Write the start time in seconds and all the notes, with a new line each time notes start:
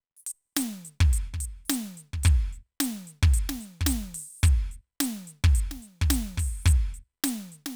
0.16 hi-hat pedal
0.26 closed hi-hat
0.56 closed hi-hat, snare, hi-hat pedal
0.85 closed hi-hat
1.00 kick
1.13 closed hi-hat
1.34 kick
1.40 closed hi-hat
1.65 hi-hat pedal
1.69 closed hi-hat, snare
1.97 closed hi-hat
2.13 kick
2.23 closed hi-hat, kick
2.52 closed hi-hat
2.80 closed hi-hat, snare
3.07 closed hi-hat
3.23 kick
3.33 closed hi-hat
3.49 snare
3.60 closed hi-hat
3.81 kick
3.86 closed hi-hat, snare
4.14 open hi-hat
4.39 kick, hi-hat pedal
4.43 closed hi-hat
4.71 closed hi-hat
5.00 closed hi-hat, snare
5.27 closed hi-hat
5.44 kick
5.55 closed hi-hat
5.71 snare
5.82 closed hi-hat
6.01 kick
6.10 closed hi-hat, snare
6.37 open hi-hat, kick
6.62 kick, hi-hat pedal
6.67 closed hi-hat
6.94 closed hi-hat
7.24 closed hi-hat, snare
7.52 closed hi-hat
7.66 snare